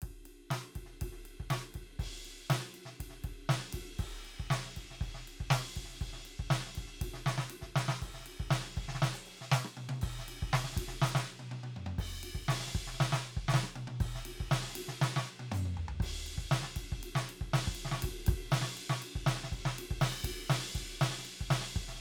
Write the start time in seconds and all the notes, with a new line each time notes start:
0.02 kick, ride
0.25 hi-hat pedal, ride
0.51 snare, ride
0.75 kick, ride
0.86 snare
0.92 snare
1.01 kick, ride
1.12 snare
1.18 snare
1.25 ride
1.40 kick
1.50 snare, ride
1.74 kick, ride
1.99 kick, ride
2.24 hi-hat pedal, ride
2.50 snare, ride
2.74 hi-hat pedal, ride
2.85 snare
3.00 kick, ride
3.10 snare
3.24 kick, ride
3.49 snare, ride
3.73 kick, hi-hat pedal, ride
3.99 kick, crash
4.25 ride
4.40 kick
4.50 snare, ride
4.65 snare
4.76 kick, ride
4.91 snare
5.01 kick, ride
5.14 snare
5.28 ride
5.40 kick
5.50 snare, ride
5.76 kick, ride
5.85 snare
5.90 snare
5.94 snare
6.01 kick, ride
6.13 snare
6.18 snare
6.25 ride
6.39 kick
6.50 snare, ride
6.66 snare
6.75 kick, ride
6.87 snare
6.95 snare
7.01 kick, ride
7.14 snare
7.26 snare
7.38 snare
7.50 ride
7.61 kick, snare
7.76 snare
7.88 snare
8.02 kick, crash
8.14 snare
8.20 snare
8.26 ride
8.40 kick
8.51 snare, ride
8.62 snare
8.72 snare
8.76 kick, ride
8.88 snare
8.94 snare
9.02 snare
9.13 open hi-hat
9.26 ride
9.41 snare
9.52 snare
9.65 cross-stick
9.77 high tom
9.89 high tom
10.01 kick, crash
10.19 snare
10.28 ride
10.42 kick
10.53 snare, ride
10.64 snare
10.72 snare
10.77 kick, ride
10.88 snare
11.02 snare
11.06 hi-hat pedal
11.15 snare
11.26 high tom
11.39 high tom
11.51 high tom
11.63 high tom
11.76 mid tom
11.86 mid tom
11.98 kick, crash
12.23 ride
12.35 kick
12.48 snare, ride
12.60 snare
12.67 snare
12.74 kick, ride
12.87 snare
12.93 snare
13.00 snare
13.12 snare
13.26 high tom
13.37 kick
13.48 snare
13.54 snare
13.63 cross-stick
13.76 high tom
13.87 high tom
14.00 kick, crash
14.15 snare
14.25 ride
14.40 kick
14.51 snare, ride
14.63 snare
14.70 snare
14.75 ride
14.88 snare
15.01 snare
15.16 snare
15.25 high tom
15.39 high tom
15.52 hi-hat pedal, mid tom
15.65 mid tom
15.77 floor tom
15.88 floor tom
16.00 kick, ride
16.26 ride
16.38 kick
16.51 snare, ride
16.63 snare
16.76 kick, ride
16.92 kick
17.03 ride
17.15 snare
17.29 ride
17.41 kick
17.53 snare, ride
17.67 kick
17.75 ride
17.85 snare
17.91 snare
17.97 snare
18.02 kick, ride
18.27 kick, ride
18.52 snare, ride
18.61 snare
18.77 ride
18.90 snare
19.02 ride
19.15 kick
19.26 snare, ride
19.35 snare
19.43 snare
19.52 kick, ride
19.65 snare
19.78 ride
19.91 kick
20.01 snare, crash
20.24 kick, ride
20.50 snare, ride
20.75 kick, ride
21.01 snare, ride
21.11 snare
21.19 snare
21.25 ride
21.41 kick
21.50 snare, ride
21.61 snare
21.75 kick, ride
21.88 snare
21.95 snare